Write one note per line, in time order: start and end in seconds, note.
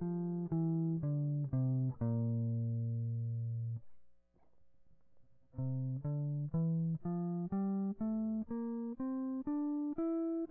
0.03 0.50 F3
0.53 1.02 E3
1.05 1.49 D3
1.55 1.94 C3
2.03 3.81 A#2
5.60 6.01 C3
6.06 6.51 D3
6.55 6.99 E3
7.06 7.51 F3
7.53 7.96 G3
8.01 8.47 A3
8.51 8.96 A#3
9.00 9.45 C4
9.48 9.96 D4
9.99 10.48 E4